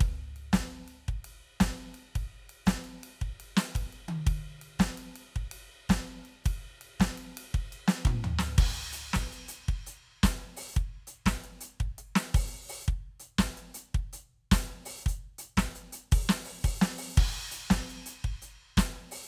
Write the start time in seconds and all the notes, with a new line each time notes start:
0.01 kick, ride
0.36 ride
0.53 kick, snare, hi-hat pedal
0.70 ride
0.88 ride
1.09 kick, crash
1.16 ride
1.25 ride
1.61 kick, snare, hi-hat pedal, ride
1.95 ride
2.12 kick, ride
2.16 ride
2.50 ride
2.66 kick, snare, hi-hat pedal
2.84 ride
3.04 ride
3.22 kick
3.40 ride
3.57 snare
3.75 kick, ride
3.93 ride
4.09 high tom
4.27 kick, ride
4.55 ride
4.62 ride
4.79 kick, snare, hi-hat pedal
4.98 ride
5.16 ride
5.33 kick, ride
5.52 ride
5.80 ride
5.90 kick, snare, ride
6.25 ride
6.45 kick, hi-hat pedal, ride
6.82 ride
7.00 kick, snare
7.18 ride
7.38 ride
7.55 kick
7.73 ride bell
7.88 snare
8.05 kick, mid tom
8.24 floor tom
8.39 snare
8.58 kick, hi-hat pedal, crash
8.93 closed hi-hat
9.14 kick, snare
9.32 closed hi-hat
9.49 closed hi-hat
9.69 kick
9.87 closed hi-hat
10.24 closed hi-hat, kick, snare
10.57 open hi-hat
10.74 kick, hi-hat pedal
11.07 closed hi-hat
11.26 kick, snare
11.44 closed hi-hat
11.61 closed hi-hat
11.80 kick
11.99 closed hi-hat
12.16 snare
12.35 open hi-hat, kick
12.69 open hi-hat
12.85 kick, hi-hat pedal
13.20 closed hi-hat
13.39 kick, snare
13.58 closed hi-hat
13.75 closed hi-hat
13.95 kick
14.13 closed hi-hat
14.52 open hi-hat, kick, snare
14.86 open hi-hat
15.03 kick, hi-hat pedal
15.08 closed hi-hat
15.39 closed hi-hat
15.57 kick, snare
15.75 closed hi-hat
15.93 closed hi-hat
16.12 open hi-hat, kick
16.29 snare
16.45 open hi-hat
16.64 open hi-hat, kick
16.82 snare
16.98 open hi-hat
17.16 kick, hi-hat pedal, crash
17.52 closed hi-hat
17.71 kick, snare
17.90 closed hi-hat
18.06 closed hi-hat
18.25 kick
18.42 closed hi-hat
18.78 open hi-hat, kick, snare
19.12 open hi-hat